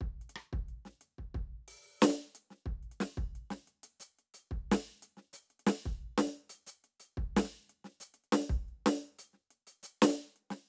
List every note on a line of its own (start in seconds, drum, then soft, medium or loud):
0.01 kick medium
0.22 closed hi-hat soft
0.30 closed hi-hat soft
0.36 cross-stick medium
0.53 kick medium
0.69 closed hi-hat soft
0.85 snare soft
1.01 closed hi-hat soft
1.19 kick soft
1.35 kick medium
1.68 open hi-hat medium
2.01 snare loud
2.01 hi-hat pedal soft
2.09 snare soft
2.35 closed hi-hat medium
2.51 snare soft
2.66 kick medium
2.83 closed hi-hat soft
2.92 closed hi-hat soft
3.01 snare medium
3.18 kick medium
3.35 closed hi-hat soft
3.51 snare medium
3.68 closed hi-hat soft
3.83 closed hi-hat medium
4.00 hi-hat pedal medium
4.19 closed hi-hat soft
4.34 closed hi-hat medium
4.51 kick medium
4.72 snare loud
4.87 snare soft
5.03 closed hi-hat medium
5.17 snare soft
5.33 hi-hat pedal medium
5.50 closed hi-hat soft
5.60 closed hi-hat soft
5.67 snare loud
5.86 kick medium
6.01 closed hi-hat soft
6.18 snare loud
6.27 snare soft
6.50 closed hi-hat medium
6.67 hi-hat pedal medium
6.84 closed hi-hat soft
7.00 closed hi-hat medium
7.17 kick medium
7.37 snare loud
7.44 snare soft
7.70 closed hi-hat soft
7.85 snare soft
8.00 hi-hat pedal medium
8.14 closed hi-hat soft
8.24 closed hi-hat soft
8.33 snare loud
8.40 snare soft
8.50 kick medium
8.69 closed hi-hat soft
8.86 snare loud
9.19 closed hi-hat medium
9.33 snare soft
9.51 closed hi-hat soft
9.67 closed hi-hat medium
9.83 hi-hat pedal medium
10.02 snare loud
10.09 snare soft
10.36 closed hi-hat soft
10.51 snare medium